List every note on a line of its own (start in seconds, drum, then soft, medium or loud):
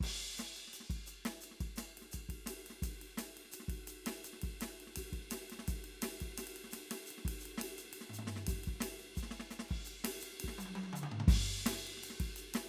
0.01 kick soft
0.01 ride loud
0.38 snare medium
0.38 hi-hat pedal medium
0.38 ride bell soft
0.57 ride bell soft
0.68 snare soft
0.74 hi-hat pedal medium
0.74 ride medium
0.81 snare soft
0.90 kick soft
0.90 ride bell soft
1.07 hi-hat pedal medium
1.07 ride bell soft
1.26 snare medium
1.26 ride medium
1.41 hi-hat pedal medium
1.41 ride bell soft
1.52 snare soft
1.61 kick soft
1.61 ride bell soft
1.76 snare medium
1.76 hi-hat pedal medium
1.76 ride bell medium
1.98 ride medium
2.02 snare soft
2.12 kick soft
2.12 hi-hat pedal medium
2.12 ride bell medium
2.29 kick soft
2.29 ride medium
2.47 snare soft
2.47 hi-hat pedal medium
2.47 ride loud
2.67 snare soft
2.67 ride medium
2.83 kick soft
2.83 hi-hat pedal medium
2.83 ride medium
3.02 ride medium
3.18 snare medium
3.18 hi-hat pedal medium
3.18 ride medium
3.37 ride medium
3.45 snare soft
3.52 hi-hat pedal medium
3.52 ride medium
3.60 snare soft
3.69 kick soft
3.69 ride medium
3.87 hi-hat pedal medium
3.87 ride medium
4.07 snare medium
4.07 ride loud
4.24 hi-hat pedal medium
4.24 ride medium
4.33 snare soft
4.42 kick soft
4.42 ride medium
4.61 snare medium
4.61 hi-hat pedal medium
4.61 ride medium
4.81 ride soft
4.87 snare soft
4.96 kick soft
4.96 hi-hat pedal medium
4.96 ride loud
5.13 kick soft
5.13 ride soft
5.31 snare medium
5.31 hi-hat pedal medium
5.31 ride loud
5.50 snare soft
5.50 ride medium
5.59 snare soft
5.68 kick soft
5.68 hi-hat pedal medium
5.68 ride medium
5.85 ride medium
6.02 snare medium
6.02 hi-hat pedal medium
6.02 ride loud
6.21 kick soft
6.21 ride medium
6.38 snare soft
6.38 hi-hat pedal medium
6.38 ride loud
6.48 ride medium
6.57 ride medium
6.64 snare soft
6.72 snare soft
6.72 hi-hat pedal medium
6.72 ride medium
6.91 snare medium
6.91 ride loud
7.07 hi-hat pedal medium
7.11 ride medium
7.18 snare soft
7.26 kick soft
7.26 ride medium
7.41 hi-hat pedal medium
7.46 ride medium
7.58 snare medium
7.58 ride loud
7.78 hi-hat pedal medium
7.78 ride medium
7.86 snare soft
7.93 ride medium
8.01 snare soft
8.10 floor tom medium
8.14 hi-hat pedal medium
8.19 floor tom medium
8.28 snare medium
8.37 snare soft
8.47 kick medium
8.47 hi-hat pedal medium
8.47 ride loud
8.64 kick soft
8.64 ride medium
8.81 snare medium
8.81 hi-hat pedal medium
8.81 ride loud
9.00 ride soft
9.09 snare soft
9.16 kick soft
9.16 hi-hat pedal medium
9.16 ride soft
9.23 snare soft
9.31 snare soft
9.40 snare soft
9.51 snare soft
9.51 hi-hat pedal medium
9.60 snare medium
9.69 kick soft
9.69 ride medium
9.85 hi-hat pedal medium
9.85 ride medium
10.05 snare medium
10.05 ride loud
10.21 hi-hat pedal medium
10.21 ride medium
10.33 snare soft
10.40 ride loud
10.45 kick soft
10.45 snare soft
10.59 hi-hat pedal medium
10.59 high tom medium
10.66 high tom medium
10.76 high tom medium
10.84 high tom soft
10.93 hi-hat pedal medium
10.93 mid tom medium
11.04 mid tom medium
11.12 floor tom medium
11.21 floor tom medium
11.28 kick loud
11.28 hi-hat pedal medium
11.28 ride loud
11.66 snare medium
11.66 hi-hat pedal medium
11.66 ride loud
11.73 snare soft
11.87 ride medium
11.97 snare soft
12.03 hi-hat pedal medium
12.03 ride medium
12.11 snare soft
12.20 kick soft
12.20 ride medium
12.37 hi-hat pedal medium
12.37 ride medium
12.54 snare medium
12.54 ride loud